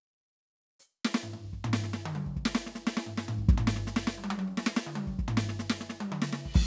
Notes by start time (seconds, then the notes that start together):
0.80 hi-hat pedal
1.05 snare
1.14 snare
1.23 floor tom
1.33 floor tom
1.44 kick
1.53 kick
1.64 floor tom
1.73 snare
1.84 snare
1.93 snare
2.06 mid tom
2.15 high tom
2.26 kick
2.37 kick
2.45 snare
2.55 snare
2.66 snare
2.75 snare
2.87 snare
3.06 floor tom
3.17 snare
3.28 floor tom
3.38 kick
3.49 kick, hi-hat pedal
3.58 floor tom
3.67 snare
3.76 snare
3.87 snare
3.96 snare
4.07 snare
4.18 high tom
4.24 high tom
4.30 high tom
4.39 high tom
4.48 cross-stick
4.57 snare
4.66 snare
4.76 snare
4.87 mid tom
4.95 high tom
5.07 kick
5.19 kick
5.28 floor tom
5.37 snare
5.49 snare
5.59 snare
5.70 snare
5.80 snare
5.89 snare
6.00 high tom
6.12 mid tom
6.22 snare
6.33 snare
6.44 kick, crash
6.54 kick, crash